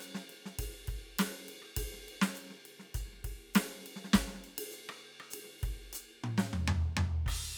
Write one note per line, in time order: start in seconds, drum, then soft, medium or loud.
0.01 hi-hat pedal medium
0.01 ride soft
0.15 snare medium
0.30 ride medium
0.46 snare soft
0.59 kick soft
0.59 hi-hat pedal medium
0.59 ride loud
0.67 kick soft
0.67 snare soft
0.88 kick soft
0.88 ride medium
1.19 snare loud
1.19 hi-hat pedal medium
1.19 ride loud
1.27 cross-stick soft
1.47 hi-hat pedal soft
1.47 ride medium
1.62 cross-stick soft
1.77 kick soft
1.77 hi-hat pedal medium
1.77 ride loud
1.86 kick soft
1.94 snare soft
2.06 hi-hat pedal soft
2.06 ride soft
2.22 snare loud
2.26 cross-stick medium
2.35 hi-hat pedal medium
2.35 ride medium
2.50 snare soft
2.57 snare soft
2.66 ride medium
2.80 snare soft
2.90 snare soft
2.95 kick soft
2.95 hi-hat pedal medium
2.95 ride bell medium
3.04 kick soft
3.04 snare soft
3.13 snare soft
3.17 snare soft
3.21 kick soft
3.21 snare soft
3.21 hi-hat pedal soft
3.21 ride medium
3.54 snare loud
3.54 hi-hat pedal medium
3.54 ride loud
3.84 hi-hat pedal soft
3.84 ride medium
3.96 snare soft
4.05 snare soft
4.14 kick soft
4.14 snare loud
4.14 hi-hat pedal medium
4.28 snare soft
4.35 snare soft
4.40 snare soft
4.44 snare soft
4.44 ride bell soft
4.52 snare soft
4.59 ride loud
4.71 hi-hat pedal medium
4.89 cross-stick medium
4.98 hi-hat pedal soft
5.20 cross-stick medium
5.31 hi-hat pedal medium
5.31 ride loud
5.44 snare soft
5.49 snare soft
5.59 hi-hat pedal soft
5.63 kick medium
5.63 ride medium
5.70 kick soft
5.74 kick soft
5.93 hi-hat pedal loud
5.93 ride bell medium
6.24 mid tom loud
6.38 snare loud
6.53 floor tom loud
6.68 floor tom loud
6.97 floor tom loud
7.26 kick medium
7.26 cross-stick medium
7.26 crash medium
7.33 kick soft
7.33 cross-stick soft
7.37 kick soft